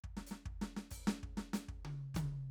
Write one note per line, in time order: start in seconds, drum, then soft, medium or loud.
0.04 kick soft
0.17 snare soft
0.27 hi-hat pedal medium
0.31 snare soft
0.46 kick soft
0.61 snare soft
0.76 snare soft
0.91 kick soft
0.91 hi-hat pedal medium
1.07 snare medium
1.23 kick soft
1.37 snare soft
1.53 snare medium
1.53 hi-hat pedal medium
1.68 kick soft
1.85 high tom medium
2.14 kick soft
2.14 hi-hat pedal medium
2.14 high tom medium